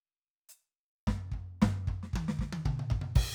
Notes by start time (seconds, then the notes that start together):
0.49 hi-hat pedal
1.07 kick, snare, floor tom
1.32 kick, floor tom
1.62 kick, snare, floor tom
1.87 kick, floor tom
2.03 snare
2.13 kick, high tom
2.28 snare
2.39 kick, snare
2.53 high tom
2.66 kick, mid tom
2.79 mid tom
2.90 kick, floor tom
3.02 mid tom
3.16 kick, crash